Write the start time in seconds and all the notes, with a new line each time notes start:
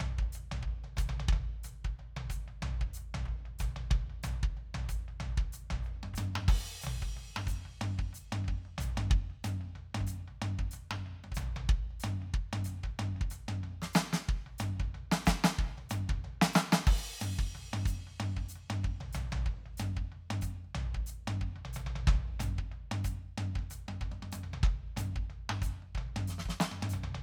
0.01 floor tom
0.19 kick, floor tom
0.33 floor tom, hi-hat pedal
0.52 floor tom
0.63 kick
0.68 floor tom
0.85 floor tom
0.98 kick, floor tom, hi-hat pedal
1.10 floor tom
1.20 floor tom
1.29 kick
1.33 floor tom
1.49 kick
1.64 floor tom, hi-hat pedal
1.85 kick, floor tom
2.00 floor tom
2.17 floor tom
2.31 kick, floor tom, hi-hat pedal
2.48 floor tom
2.63 floor tom
2.82 kick, floor tom
2.94 floor tom, hi-hat pedal
3.15 floor tom
3.26 kick, floor tom
3.46 floor tom
3.60 kick, floor tom, hi-hat pedal
3.77 floor tom
3.91 kick, floor tom
4.10 floor tom
4.24 floor tom, hi-hat pedal
4.44 kick, floor tom
4.57 floor tom
4.75 floor tom
4.90 kick, floor tom, hi-hat pedal
5.09 floor tom
5.21 floor tom
5.38 kick, floor tom
5.53 floor tom, hi-hat pedal
5.71 kick, floor tom
5.84 floor tom, hi-hat pedal
6.04 high tom
6.14 kick, hi-hat pedal
6.19 high tom
6.36 high tom
6.49 kick, crash
6.82 floor tom, hi-hat pedal
6.87 floor tom
7.03 kick
7.18 floor tom
7.37 high tom
7.48 kick, floor tom, hi-hat pedal
7.66 floor tom
7.82 high tom
7.99 kick, floor tom
8.14 floor tom, hi-hat pedal
8.33 high tom
8.45 kick, floor tom
8.66 high tom
8.79 kick, floor tom, hi-hat pedal
8.98 high tom
9.11 kick, floor tom
9.31 floor tom
9.45 hi-hat pedal, high tom
9.62 floor tom
9.76 floor tom
9.95 high tom
10.01 kick
10.08 floor tom, hi-hat pedal
10.28 floor tom
10.42 high tom
10.59 kick, floor tom
10.72 floor tom, hi-hat pedal
10.92 high tom
10.98 kick
11.07 floor tom
11.25 high tom
11.32 kick, hi-hat pedal
11.38 floor tom
11.57 floor tom
11.70 kick, floor tom
11.89 kick, floor tom
12.00 hi-hat pedal
12.05 high tom
12.22 floor tom
12.34 kick, floor tom
12.54 high tom
12.65 floor tom, hi-hat pedal
12.84 kick, floor tom
13.00 high tom
13.17 floor tom
13.22 kick
13.31 floor tom, hi-hat pedal
13.49 high tom
13.64 floor tom
13.83 snare
13.94 kick, snare, hi-hat pedal
14.14 snare
14.29 kick, floor tom
14.47 floor tom
14.59 hi-hat pedal, high tom
14.80 kick, floor tom
14.95 floor tom
15.12 snare
15.26 kick, snare, hi-hat pedal
15.45 snare
15.59 kick, floor tom
15.78 floor tom
15.90 hi-hat pedal, high tom
16.10 kick, floor tom
16.25 floor tom
16.42 snare
16.54 snare, hi-hat pedal
16.73 snare
16.88 kick, crash
17.21 hi-hat pedal, high tom
17.39 kick
17.56 floor tom
17.74 high tom
17.86 kick, floor tom, hi-hat pedal
18.08 floor tom
18.21 high tom
18.37 kick, floor tom
18.49 hi-hat pedal
18.56 floor tom
18.71 high tom
18.84 kick, floor tom
19.01 floor tom
19.13 floor tom, hi-hat pedal
19.33 floor tom
19.47 kick, floor tom
19.66 floor tom
19.78 hi-hat pedal, high tom
19.97 kick, floor tom
20.12 floor tom
20.31 high tom
20.42 kick, floor tom, hi-hat pedal
20.65 high tom
20.75 floor tom
20.95 kick, high tom
21.07 floor tom, hi-hat pedal
21.28 high tom
21.42 kick, floor tom
21.56 floor tom
21.66 floor tom
21.74 floor tom, hi-hat pedal
21.87 floor tom
21.96 floor tom
22.08 kick, floor tom
22.40 floor tom, hi-hat pedal, high tom
22.59 kick
22.72 floor tom
22.92 high tom
23.05 kick, floor tom, hi-hat pedal
23.38 high tom
23.56 kick, floor tom
23.71 floor tom, hi-hat pedal
23.89 high tom
24.02 kick, floor tom
24.12 high tom
24.23 high tom
24.33 hi-hat pedal, high tom
24.44 floor tom
24.54 floor tom
24.64 kick, floor tom
24.97 floor tom, hi-hat pedal, high tom
25.17 kick
25.30 floor tom
25.50 high tom
25.62 kick, floor tom, hi-hat pedal
25.83 high tom
25.96 kick, floor tom
26.17 high tom
26.28 snare, hi-hat pedal
26.39 snare
26.46 kick, snare
26.61 snare
26.72 high tom
26.83 high tom
26.90 hi-hat pedal
26.94 floor tom
27.04 floor tom
27.15 floor tom